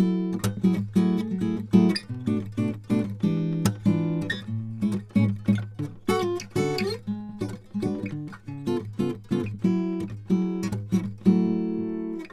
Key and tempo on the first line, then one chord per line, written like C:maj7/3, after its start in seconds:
F# minor, 187 BPM
0.00 F#:min9(*5)/2
2.06 B:min7(4)
3.34 E:7(b9,11,*5)/4
4.62 A:maj7(11)
5.91 D:maj7
7.19 G#:hdim7/b5
8.47 C#:aug(b7,11)
9.76 F#:min9(b9,*5)/b2